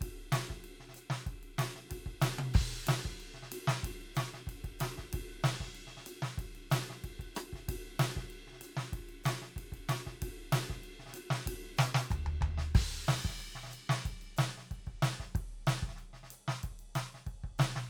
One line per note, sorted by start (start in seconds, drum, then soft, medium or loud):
0.01 kick medium
0.01 ride loud
0.32 snare loud
0.32 hi-hat pedal medium
0.32 ride loud
0.49 kick medium
0.49 snare soft
0.64 ride medium
0.80 snare soft
0.89 snare soft
0.95 hi-hat pedal medium
0.95 ride medium
1.10 snare loud
1.26 kick medium
1.26 ride medium
1.43 ride soft
1.58 snare loud
1.58 hi-hat pedal medium
1.58 ride loud
1.76 snare soft
1.89 kick soft
1.89 snare soft
1.89 ride medium
2.06 kick medium
2.21 snare loud
2.21 hi-hat pedal medium
2.21 ride loud
2.39 high tom loud
2.54 kick loud
2.54 crash loud
2.87 snare loud
2.87 hi-hat pedal medium
2.87 ride loud
3.05 kick medium
3.20 ride soft
3.34 snare soft
3.43 snare soft
3.51 hi-hat pedal medium
3.51 ride loud
3.68 snare loud
3.83 kick medium
3.83 ride loud
4.01 ride soft
4.15 snare loud
4.15 hi-hat pedal medium
4.15 ride medium
4.34 snare soft
4.47 kick medium
4.47 ride medium
4.64 kick medium
4.64 ride medium
4.79 snare medium
4.79 hi-hat pedal medium
4.79 ride loud
4.98 kick soft
4.98 snare soft
5.13 kick medium
5.13 ride loud
5.43 snare loud
5.43 hi-hat pedal medium
5.43 ride medium
5.60 kick medium
5.60 snare soft
5.65 snare soft
5.75 ride soft
5.87 snare soft
5.97 snare soft
6.01 snare soft
6.06 hi-hat pedal medium
6.06 ride medium
6.22 snare medium
6.38 kick medium
6.38 ride medium
6.55 ride soft
6.71 snare loud
6.71 hi-hat pedal medium
6.71 ride loud
6.90 snare soft
7.04 kick soft
7.04 ride medium
7.19 kick soft
7.19 ride soft
7.35 cross-stick medium
7.35 hi-hat pedal medium
7.35 ride loud
7.53 kick soft
7.53 snare soft
7.69 kick medium
7.69 ride loud
7.99 snare loud
7.99 hi-hat pedal medium
7.99 ride loud
8.17 kick medium
8.17 snare soft
8.30 ride medium
8.47 snare soft
8.53 snare soft
8.61 hi-hat pedal medium
8.61 ride medium
8.77 snare medium
8.93 kick medium
8.93 ride medium
9.09 ride soft
9.24 snare loud
9.24 hi-hat pedal medium
9.24 ride loud
9.42 snare soft
9.56 kick medium
9.56 ride medium
9.72 kick soft
9.72 ride medium
9.89 snare loud
9.89 hi-hat pedal medium
9.89 ride loud
10.07 kick soft
10.07 snare soft
10.22 kick medium
10.22 ride loud
10.53 snare loud
10.53 hi-hat pedal medium
10.53 ride loud
10.70 kick medium
10.70 snare soft
10.84 ride medium
10.99 snare soft
11.06 snare soft
11.09 snare soft
11.11 snare soft
11.11 ride medium
11.15 hi-hat pedal medium
11.30 snare loud
11.46 kick medium
11.46 ride loud
11.76 kick soft
11.76 snare loud
11.76 hi-hat pedal medium
11.76 ride medium
11.95 snare loud
12.10 kick medium
12.10 floor tom loud
12.10 hi-hat pedal medium
12.26 floor tom loud
12.41 kick medium
12.41 floor tom loud
12.58 snare medium
12.75 kick loud
12.75 hi-hat pedal soft
12.75 crash loud
13.08 snare loud
13.08 hi-hat pedal medium
13.08 crash medium
13.25 kick medium
13.25 snare soft
13.38 snare soft
13.38 hi-hat pedal medium
13.55 snare medium
13.63 snare medium
13.67 snare soft
13.70 snare soft
13.70 hi-hat pedal medium
13.70 crash medium
13.89 snare loud
14.05 kick medium
14.05 crash medium
14.22 crash soft
14.37 snare loud
14.37 hi-hat pedal medium
14.37 crash medium
14.58 snare soft
14.71 kick medium
14.71 crash soft
14.87 kick medium
14.87 crash soft
15.02 snare loud
15.02 hi-hat pedal medium
15.02 crash medium
15.20 kick soft
15.20 snare soft
15.35 kick medium
15.35 crash medium
15.67 snare loud
15.67 hi-hat pedal medium
15.67 crash medium
15.83 kick medium
15.88 snare soft
15.96 snare soft
15.96 crash soft
16.13 snare soft
16.23 snare soft
16.31 hi-hat pedal medium
16.31 crash medium
16.48 snare loud
16.63 kick medium
16.63 crash medium
16.79 crash soft
16.95 snare loud
16.95 hi-hat pedal medium
16.95 crash medium
17.14 snare soft
17.27 kick medium
17.27 crash soft
17.44 kick medium
17.58 snare loud
17.58 hi-hat pedal medium
17.58 high tom loud
17.76 snare medium